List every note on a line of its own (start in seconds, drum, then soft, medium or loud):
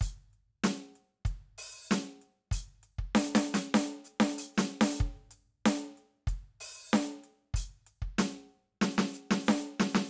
0.01 closed hi-hat loud
0.01 kick medium
0.01 hi-hat pedal medium
0.34 closed hi-hat soft
0.64 closed hi-hat loud
0.64 snare loud
0.96 closed hi-hat soft
1.26 kick medium
1.26 closed hi-hat medium
1.58 open hi-hat loud
1.91 closed hi-hat loud
1.91 snare loud
1.91 hi-hat pedal medium
2.22 closed hi-hat soft
2.52 closed hi-hat loud
2.52 kick medium
2.84 closed hi-hat soft
2.99 kick medium
3.15 open hi-hat loud
3.15 snare loud
3.26 hi-hat pedal soft
3.36 closed hi-hat loud
3.36 snare loud
3.53 closed hi-hat loud
3.53 snare loud
3.53 hi-hat pedal medium
3.75 closed hi-hat loud
3.75 snare loud
4.05 hi-hat pedal medium
4.21 snare loud
4.39 closed hi-hat loud
4.55 snare loud
4.55 hi-hat pedal soft
4.59 closed hi-hat loud
4.81 open hi-hat loud
4.81 snare loud
4.99 kick medium
4.99 hi-hat pedal medium
5.31 closed hi-hat medium
5.66 closed hi-hat loud
5.66 snare loud
5.98 closed hi-hat soft
6.28 kick medium
6.28 closed hi-hat medium
6.61 open hi-hat loud
6.94 snare loud
6.94 hi-hat pedal medium
6.94 open hi-hat medium
7.24 closed hi-hat soft
7.54 closed hi-hat loud
7.54 kick medium
7.87 closed hi-hat soft
8.02 kick medium
8.19 closed hi-hat loud
8.19 snare loud
8.82 snare loud
8.82 hi-hat pedal medium
8.99 snare loud
9.14 hi-hat pedal medium
9.31 snare loud
9.46 snare loud
9.46 hi-hat pedal medium
9.80 snare loud
9.95 snare loud